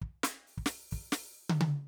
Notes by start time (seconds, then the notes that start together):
0.01 kick
0.23 closed hi-hat, snare
0.47 open hi-hat
0.58 kick
0.66 open hi-hat, snare
0.91 open hi-hat, kick
1.12 open hi-hat, snare
1.50 high tom
1.61 high tom